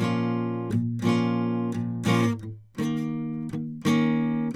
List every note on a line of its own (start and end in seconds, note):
0.01 0.72 A#2
0.01 0.73 F3
0.01 0.74 A#3
0.01 0.79 C#4
0.05 0.76 F4
0.72 1.00 A#2
0.72 0.98 F3
1.00 1.73 A#2
1.00 1.74 F3
1.06 1.79 A#3
1.06 1.75 C#4
1.06 1.77 F4
1.73 2.06 A#2
1.73 2.07 F3
2.06 2.30 A#2
2.06 2.24 F3
2.06 2.39 A#3
2.06 2.33 C#4
2.10 2.30 F4
2.79 3.54 D#3
2.79 3.51 A#3
3.54 3.84 D#3
3.54 3.87 A#3
3.86 4.54 D#3
3.86 4.54 A#3
3.86 4.53 C#4